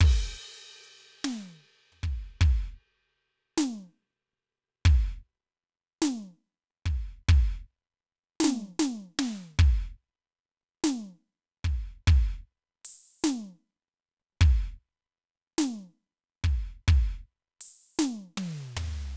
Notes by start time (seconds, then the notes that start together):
0.01 kick, hi-hat pedal, crash
0.21 kick
0.45 closed hi-hat
0.84 closed hi-hat
1.25 snare
1.42 snare
1.45 snare
1.49 snare
1.93 snare, floor tom, ride
2.04 kick
2.41 kick
3.58 snare
4.86 kick
6.02 snare
6.86 kick
7.29 kick
8.40 snare
8.45 snare
8.80 snare
9.19 snare
9.59 kick
10.84 snare
11.01 snare
11.65 kick
12.08 kick
12.85 open hi-hat
13.23 snare, hi-hat pedal
13.39 snare
14.41 kick
15.59 snare
16.44 kick
16.88 kick
17.61 open hi-hat
17.97 snare, hi-hat pedal
18.38 high tom
18.77 floor tom